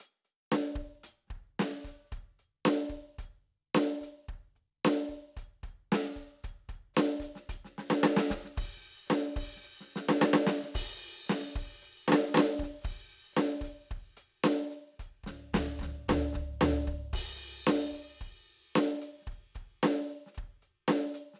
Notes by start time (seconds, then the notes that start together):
0.03 closed hi-hat
0.25 closed hi-hat
0.52 closed hi-hat, snare
0.75 kick
1.04 closed hi-hat
1.27 kick, snare, closed hi-hat
1.59 snare
1.84 closed hi-hat, kick
2.12 closed hi-hat, kick
2.39 closed hi-hat
2.65 snare
2.90 kick, closed hi-hat
3.18 closed hi-hat, kick
3.75 snare
4.01 closed hi-hat, kick
4.28 kick, closed hi-hat
4.55 kick, closed hi-hat
4.85 snare
5.09 kick, closed hi-hat
5.37 closed hi-hat, kick
5.63 closed hi-hat, kick
5.92 snare
6.16 kick, closed hi-hat
6.44 closed hi-hat, kick
6.69 closed hi-hat, kick
6.94 snare, hi-hat pedal
7.20 closed hi-hat, kick
7.35 snare
7.49 closed hi-hat, kick
7.65 snare
7.78 snare
7.90 snare
8.03 snare, hi-hat pedal
8.17 snare
8.30 kick, snare
8.44 snare
8.57 kick, crash
8.76 snare, open hi-hat
9.07 snare, hi-hat pedal
9.36 kick, crash
9.56 snare
9.64 hi-hat pedal
9.80 snare
9.96 snare
10.09 snare
10.20 snare, hi-hat pedal
10.33 snare
10.47 snare
10.63 snare
10.74 kick, hi-hat pedal, crash
11.26 snare, hi-hat pedal
11.56 kick, crash
11.82 hi-hat pedal
12.08 snare
12.12 snare
12.34 snare, hi-hat pedal
12.37 snare
12.59 kick, snare
12.81 kick, hi-hat pedal, crash
13.10 closed hi-hat
13.33 hi-hat pedal
13.37 snare
13.61 closed hi-hat, kick
13.90 kick, closed hi-hat
14.17 closed hi-hat
14.44 snare
14.72 closed hi-hat
14.93 snare
14.99 closed hi-hat, kick
15.24 kick, snare
15.28 floor tom
15.54 kick, snare, floor tom
15.79 kick, snare, floor tom
16.08 kick, snare, floor tom
16.33 kick, snare, floor tom
16.61 snare, floor tom, hi-hat pedal
16.87 kick, floor tom
17.13 kick, crash
17.37 closed hi-hat
17.67 snare
17.92 closed hi-hat, kick
18.21 closed hi-hat, kick
18.45 closed hi-hat
18.75 snare
19.02 closed hi-hat
19.21 snare
19.27 closed hi-hat, kick
19.55 closed hi-hat, kick
19.83 snare
20.08 closed hi-hat
20.26 snare
20.34 closed hi-hat, kick
20.62 closed hi-hat
20.88 snare
21.14 closed hi-hat
21.34 snare